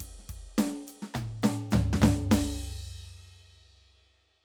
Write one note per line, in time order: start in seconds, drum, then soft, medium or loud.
0.01 kick soft
0.01 ride medium
0.07 kick soft
0.20 snare soft
0.24 snare soft
0.30 kick soft
0.30 ride medium
0.37 kick soft
0.59 snare loud
0.59 hi-hat pedal medium
0.59 ride loud
0.67 snare soft
0.88 hi-hat pedal medium
0.88 ride medium
1.03 snare medium
1.15 kick soft
1.15 cross-stick medium
1.15 hi-hat pedal medium
1.15 mid tom loud
1.21 kick soft
1.43 snare loud
1.43 hi-hat pedal medium
1.43 mid tom loud
1.71 snare medium
1.71 hi-hat pedal medium
1.71 floor tom loud
1.94 snare loud
1.94 floor tom loud
2.02 snare loud
2.02 hi-hat pedal medium
2.02 floor tom loud
2.31 kick medium
2.31 snare loud
2.31 hi-hat pedal loud
2.31 crash loud
2.38 kick soft
2.38 cross-stick medium